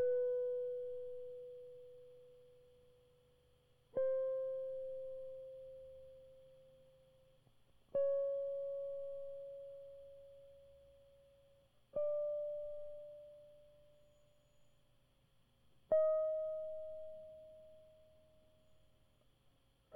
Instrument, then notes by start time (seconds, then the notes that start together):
electric guitar
0.00 B4
3.97 C5
7.96 C#5
11.97 D5
15.92 D#5